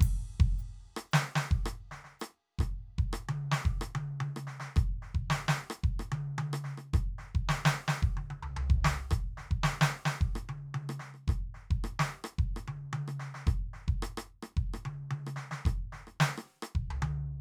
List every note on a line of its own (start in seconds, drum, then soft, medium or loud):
0.01 kick loud
0.01 hi-hat pedal medium
0.01 ride medium
0.40 kick loud
0.59 hi-hat pedal medium
0.97 cross-stick medium
1.12 snare loud
1.12 hi-hat pedal soft
1.36 snare medium
1.48 kick medium
1.48 snare soft
1.66 cross-stick medium
1.92 snare soft
2.05 snare soft
2.20 cross-stick medium
2.20 hi-hat pedal medium
2.59 kick medium
2.59 cross-stick medium
2.99 kick medium
3.13 cross-stick medium
3.29 high tom loud
3.52 snare medium
3.66 kick medium
3.82 cross-stick medium
3.95 high tom loud
4.21 high tom loud
4.37 cross-stick medium
4.47 snare soft
4.60 snare medium
4.76 kick medium
4.76 cross-stick medium
5.03 snare soft
5.15 kick medium
5.30 snare medium
5.49 snare loud
5.70 cross-stick medium
5.84 kick medium
6.00 cross-stick medium
6.12 high tom loud
6.39 high tom loud
6.54 cross-stick medium
6.65 snare soft
6.78 cross-stick medium
6.94 kick medium
6.94 cross-stick medium
7.19 snare soft
7.35 kick medium
7.49 snare medium
7.66 snare loud
7.88 snare medium
8.03 kick medium
8.17 high tom medium
8.31 high tom medium
8.43 floor tom medium
8.57 floor tom loud
8.70 kick medium
8.85 snare loud
9.11 kick medium
9.11 cross-stick medium
9.38 snare soft
9.51 kick medium
9.64 snare loud
9.82 snare loud
10.06 snare medium
10.21 kick medium
10.36 cross-stick medium
10.49 high tom medium
10.75 high tom loud
10.90 cross-stick medium
11.00 snare soft
11.14 cross-stick soft
11.28 kick medium
11.28 cross-stick medium
11.55 snare soft
11.71 kick medium
11.84 cross-stick medium
12.00 snare medium
12.24 cross-stick medium
12.39 kick medium
12.57 cross-stick medium
12.68 high tom medium
12.93 high tom loud
13.08 cross-stick medium
13.20 snare soft
13.35 snare soft
13.47 kick medium
13.47 cross-stick medium
13.74 snare soft
13.88 kick medium
14.03 cross-stick medium
14.18 cross-stick medium
14.43 cross-stick medium
14.57 kick medium
14.74 cross-stick medium
14.86 high tom medium
15.11 high tom loud
15.27 cross-stick medium
15.37 snare medium
15.52 snare medium
15.66 kick medium
15.66 cross-stick medium
15.93 snare soft
16.07 cross-stick soft
16.21 snare loud
16.38 cross-stick medium
16.63 cross-stick medium
16.75 kick medium
16.91 floor tom medium
17.03 high tom loud